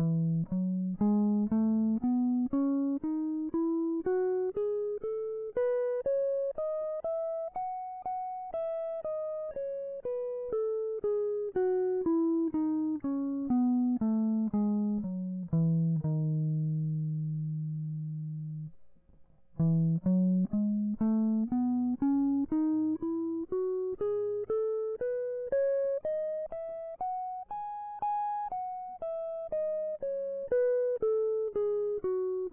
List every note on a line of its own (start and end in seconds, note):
0.00 0.47 E3
0.53 0.97 F#3
1.01 1.50 G#3
1.52 2.01 A3
2.04 2.50 B3
2.53 3.01 C#4
3.04 3.52 D#4
3.54 4.04 E4
4.06 4.53 F#4
4.57 4.99 G#4
5.02 5.49 A4
5.57 6.03 B4
6.06 6.53 C#5
6.58 7.03 D#5
7.04 7.54 E5
7.56 8.05 F#5
8.05 8.53 F#5
8.54 9.03 E5
9.04 9.54 D#5
9.56 10.05 C#5
10.05 10.58 B4
10.52 11.02 A4
11.04 11.53 G#4
11.56 12.06 F#4
12.06 12.51 E4
12.54 12.99 D#4
13.04 13.53 C#4
13.50 14.01 B3
14.02 14.51 A3
14.54 15.06 G#3
15.04 15.49 F#3
15.53 16.02 E3
16.05 18.71 D#3
19.60 20.00 E3
20.06 20.49 F#3
20.54 20.97 G#3
21.01 21.48 A3
21.52 21.99 B3
22.02 22.48 C#4
22.52 22.99 D#4
23.02 23.47 E4
23.52 23.97 F#4
24.01 24.47 G#4
24.50 24.99 A4
25.01 25.51 B4
25.52 26.00 C#5
26.05 26.48 D#5
26.52 27.00 E5
27.00 27.47 F#5
28.02 28.50 G#5
28.51 28.98 F#5
29.02 29.50 E5
29.52 29.98 D#5
30.02 30.49 C#5
30.52 30.98 B4
31.02 31.53 A4
31.56 32.00 G#4
32.04 32.51 F#4